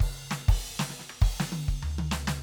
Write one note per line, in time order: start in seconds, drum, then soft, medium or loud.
0.01 kick loud
0.01 crash medium
0.32 snare loud
0.49 kick loud
0.49 crash medium
0.80 snare loud
0.90 snare medium
1.00 snare medium
1.10 cross-stick medium
1.22 kick loud
1.22 crash medium
1.41 snare loud
1.53 high tom loud
1.69 kick medium
1.83 floor tom loud
1.99 high tom loud
2.12 snare loud
2.28 snare loud